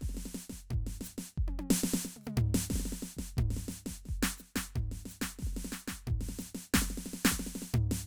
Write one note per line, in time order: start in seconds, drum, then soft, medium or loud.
0.01 kick soft
0.01 snare soft
0.09 snare soft
0.14 snare soft
0.17 snare soft
0.25 snare soft
0.34 snare medium
0.38 hi-hat pedal medium
0.49 kick soft
0.49 snare soft
0.70 kick soft
0.70 floor tom medium
0.86 snare soft
1.01 snare soft
1.01 hi-hat pedal loud
1.18 snare medium
1.37 kick medium
1.48 kick soft
1.48 high tom medium
1.59 high tom medium
1.70 snare loud
1.83 snare medium
1.93 snare medium
2.04 snare soft
2.04 hi-hat pedal soft
2.16 mid tom soft
2.21 hi-hat pedal soft
2.21 ride soft
2.27 mid tom medium
2.37 floor tom loud
2.54 snare loud
2.70 kick soft
2.70 snare medium
2.75 snare soft
2.79 snare soft
2.85 snare soft
2.92 snare medium
3.02 snare medium
3.02 hi-hat pedal soft
3.17 kick soft
3.17 snare medium
3.37 kick soft
3.37 floor tom loud
3.50 snare soft
3.56 snare soft
3.68 snare medium
3.68 hi-hat pedal medium
3.86 kick soft
3.86 snare medium
4.05 kick soft
4.05 snare soft
4.22 snare loud
4.37 snare soft
4.37 hi-hat pedal medium
4.55 kick soft
4.55 snare medium
4.75 kick soft
4.75 floor tom medium
4.91 snare soft
5.05 snare soft
5.05 hi-hat pedal medium
5.21 kick soft
5.21 snare medium
5.39 kick soft
5.39 snare soft
5.46 snare soft
5.53 snare soft
5.56 snare soft
5.64 snare soft
5.72 snare medium
5.77 hi-hat pedal soft
5.87 kick soft
5.87 snare medium
6.07 kick soft
6.07 floor tom medium
6.21 snare soft
6.29 snare soft
6.38 snare medium
6.38 hi-hat pedal medium
6.54 snare medium
6.74 kick soft
6.74 snare loud
6.82 snare medium
6.90 snare soft
6.97 snare soft
7.06 snare soft
7.13 snare soft
7.25 snare loud
7.31 kick soft
7.31 snare soft
7.39 snare medium
7.46 snare soft
7.55 snare medium
7.62 snare soft
7.74 floor tom loud
7.91 snare medium